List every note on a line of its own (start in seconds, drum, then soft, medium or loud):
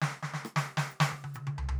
0.02 snare loud
0.23 snare medium
0.34 snare medium
0.45 cross-stick medium
0.45 hi-hat pedal medium
0.56 snare loud
0.77 snare medium
0.90 hi-hat pedal medium
1.00 snare loud
1.12 high tom medium
1.24 high tom medium
1.34 hi-hat pedal medium
1.34 high tom medium
1.47 high tom medium
1.58 floor tom loud
1.69 floor tom loud